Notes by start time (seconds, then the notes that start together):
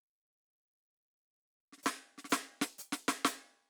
1.72 snare
1.78 snare
1.83 snare, hi-hat pedal
2.18 snare
2.24 snare
2.30 snare, hi-hat pedal
2.61 snare
2.78 hi-hat pedal
2.92 snare
3.08 snare
3.25 snare, hi-hat pedal